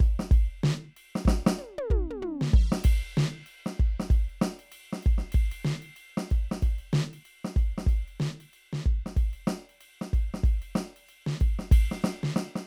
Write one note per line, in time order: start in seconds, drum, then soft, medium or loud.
0.01 kick medium
0.01 ride soft
0.20 snare medium
0.32 kick loud
0.32 ride bell soft
0.64 snare loud
0.64 hi-hat pedal soft
0.97 ride bell medium
1.16 snare medium
1.26 kick medium
1.26 snare loud
1.47 snare loud
1.59 high tom medium
1.79 high tom loud
1.91 kick medium
1.91 mid tom loud
2.11 mid tom medium
2.22 floor tom loud
2.42 snare loud
2.53 kick loud
2.53 crash medium
2.73 snare loud
2.85 kick medium
2.85 ride loud
3.18 snare loud
3.18 hi-hat pedal soft
3.47 ride bell soft
3.67 snare medium
3.80 kick medium
4.01 snare medium
4.11 kick medium
4.11 ride soft
4.30 ride bell soft
4.42 snare loud
4.42 hi-hat pedal soft
4.60 ride soft
4.73 ride medium
4.94 snare medium
5.03 kick medium
5.03 ride soft
5.19 snare soft
5.33 kick medium
5.33 ride medium
5.52 ride medium
5.66 snare loud
5.66 hi-hat pedal soft
5.83 ride soft
5.97 ride medium
6.18 snare medium
6.31 kick medium
6.31 ride soft
6.52 snare medium
6.63 kick medium
6.63 ride soft
6.79 ride soft
6.94 snare loud
6.94 hi-hat pedal medium
7.14 ride soft
7.26 ride soft
7.45 snare medium
7.57 kick medium
7.57 ride soft
7.79 snare medium
7.87 kick medium
7.87 ride soft
8.08 ride soft
8.21 snare loud
8.21 hi-hat pedal soft
8.41 ride soft
8.54 ride soft
8.74 snare medium
8.87 kick medium
9.07 snare medium
9.17 kick medium
9.17 ride soft
9.34 ride soft
9.48 snare loud
9.48 hi-hat pedal medium
9.70 ride soft
9.81 ride medium
10.02 snare medium
10.14 kick medium
10.14 ride soft
10.35 snare medium
10.44 kick medium
10.44 ride soft
10.63 ride soft
10.76 snare medium
10.76 hi-hat pedal medium
10.97 ride soft
11.07 hi-hat pedal soft
11.07 ride soft
11.27 snare medium
11.41 kick medium
11.41 ride soft
11.60 snare medium
11.72 kick loud
11.72 ride loud
11.92 snare medium
12.03 snare loud
12.03 hi-hat pedal medium
12.24 snare medium
12.37 snare medium
12.56 snare medium